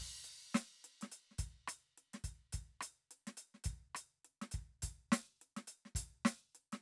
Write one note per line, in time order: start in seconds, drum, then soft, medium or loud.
0.24 closed hi-hat medium
0.54 closed hi-hat medium
0.54 snare medium
0.54 hi-hat pedal medium
0.84 closed hi-hat medium
1.01 snare soft
1.01 closed hi-hat medium
1.12 closed hi-hat medium
1.31 snare soft
1.38 closed hi-hat medium
1.38 kick soft
1.68 closed hi-hat medium
1.68 cross-stick medium
1.98 closed hi-hat soft
2.13 snare soft
2.13 closed hi-hat medium
2.24 closed hi-hat medium
2.24 kick soft
2.52 closed hi-hat medium
2.52 kick soft
2.81 closed hi-hat medium
2.81 cross-stick medium
3.11 closed hi-hat medium
3.27 snare soft
3.27 closed hi-hat medium
3.37 closed hi-hat medium
3.54 snare soft
3.64 closed hi-hat medium
3.64 kick soft
3.95 closed hi-hat medium
3.95 cross-stick medium
4.25 closed hi-hat soft
4.41 snare soft
4.41 closed hi-hat medium
4.51 closed hi-hat medium
4.51 kick soft
4.82 closed hi-hat medium
4.82 kick soft
5.12 closed hi-hat medium
5.12 snare medium
5.41 closed hi-hat soft
5.56 snare soft
5.56 closed hi-hat medium
5.67 closed hi-hat medium
5.85 snare soft
5.95 closed hi-hat loud
5.95 kick soft
6.25 closed hi-hat medium
6.25 snare medium
6.55 closed hi-hat medium
6.72 snare soft
6.72 closed hi-hat medium